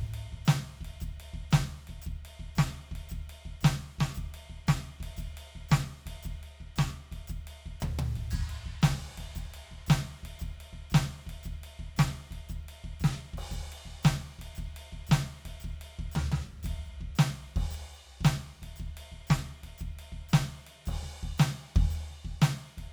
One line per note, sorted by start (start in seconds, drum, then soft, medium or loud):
0.14 ride medium
0.32 kick soft
0.45 snare loud
0.45 percussion medium
0.49 ride medium
0.81 kick soft
0.85 ride medium
1.01 kick medium
1.01 percussion medium
1.20 ride medium
1.34 kick soft
1.51 kick medium
1.51 snare loud
1.51 ride soft
1.51 percussion medium
1.87 kick soft
1.87 ride medium
2.02 percussion medium
2.07 kick medium
2.25 ride medium
2.40 kick soft
2.56 kick medium
2.56 snare loud
2.56 percussion medium
2.60 ride medium
2.91 kick soft
2.95 ride medium
3.09 kick medium
3.09 percussion medium
3.30 ride medium
3.45 kick soft
3.61 kick medium
3.61 snare loud
3.61 percussion medium
3.65 ride medium
3.99 kick soft
3.99 snare medium
3.99 ride medium
4.15 kick medium
4.15 percussion medium
4.34 ride medium
4.50 kick soft
4.67 kick medium
4.67 snare loud
4.67 ride medium
4.67 percussion medium
5.00 kick soft
5.00 ride medium
5.17 kick medium
5.17 ride soft
5.17 percussion medium
5.37 ride medium
5.55 kick soft
5.69 kick medium
5.69 snare loud
5.69 ride medium
5.69 percussion medium
6.06 kick soft
6.06 ride medium
6.23 kick medium
6.23 percussion medium
6.43 ride soft
6.60 kick soft
6.76 kick medium
6.76 snare loud
6.76 ride medium
6.76 percussion medium
7.12 kick soft
7.12 ride medium
7.28 kick medium
7.28 percussion medium
7.47 ride medium
7.66 kick soft
7.80 kick medium
7.80 floor tom loud
7.80 percussion medium
7.99 high tom loud
7.99 percussion soft
8.16 kick soft
8.16 ride medium
8.31 kick medium
8.31 percussion medium
8.31 crash medium
8.50 ride medium
8.66 kick soft
8.82 kick medium
8.82 snare loud
8.82 crash medium
8.82 percussion medium
9.18 kick soft
9.18 ride medium
9.35 kick medium
9.35 percussion medium
9.54 ride medium
9.71 kick soft
9.87 kick medium
9.87 snare loud
9.87 ride medium
9.87 percussion medium
10.23 kick soft
10.23 ride medium
10.39 kick medium
10.39 percussion medium
10.60 ride medium
10.73 kick soft
10.90 kick medium
10.90 percussion medium
10.94 snare loud
10.94 ride medium
11.27 kick soft
11.27 ride medium
11.43 kick medium
11.43 percussion medium
11.64 ride medium
11.79 kick soft
11.97 kick medium
11.97 snare loud
11.97 ride medium
11.97 percussion medium
12.31 kick soft
12.31 ride medium
12.49 kick medium
12.49 percussion medium
12.69 ride medium
12.84 kick soft
13.00 kick medium
13.00 percussion medium
13.04 snare loud
13.04 ride medium
13.34 kick medium
13.34 crash medium
13.51 kick medium
13.51 percussion soft
13.72 ride medium
13.86 kick soft
14.03 kick medium
14.03 snare loud
14.03 ride medium
14.03 percussion medium
14.39 kick soft
14.39 ride medium
14.55 kick medium
14.55 percussion medium
14.76 ride medium
14.93 kick soft
15.07 kick medium
15.07 percussion medium
15.11 snare loud
15.11 ride medium
15.45 kick soft
15.45 ride medium
15.60 percussion medium
15.64 kick medium
15.81 ride medium
15.99 kick medium
16.12 floor tom loud
16.12 percussion medium
16.16 snare loud
16.32 snare medium
16.32 floor tom medium
16.46 kick soft
16.63 kick medium
16.63 ride medium
16.63 percussion medium
16.85 percussion soft
17.01 kick soft
17.15 snare loud
17.15 percussion medium
17.19 ride medium
17.56 kick medium
17.56 crash medium
17.71 ride medium
17.71 percussion medium
17.94 percussion soft
18.21 kick medium
18.21 percussion medium
18.25 snare loud
18.25 ride medium
18.62 kick soft
18.62 ride medium
18.76 kick medium
18.76 percussion soft
18.97 ride medium
19.12 kick soft
19.27 kick medium
19.27 snare loud
19.27 percussion medium
19.31 ride medium
19.64 kick soft
19.64 ride medium
19.78 kick medium
19.78 percussion medium
19.99 ride medium
19.99 percussion soft
20.12 kick soft
20.29 percussion medium
20.33 kick soft
20.33 snare loud
20.33 ride medium
20.67 ride medium
20.86 kick medium
20.86 crash medium
20.86 percussion medium
21.03 snare soft
21.23 kick medium
21.38 snare loud
21.38 ride medium
21.38 percussion medium
21.75 kick loud
21.75 crash medium
21.91 percussion medium
21.95 ride soft
22.10 snare soft
22.25 kick medium
22.42 snare loud
22.42 ride medium
22.42 percussion medium
22.78 kick soft
22.78 ride medium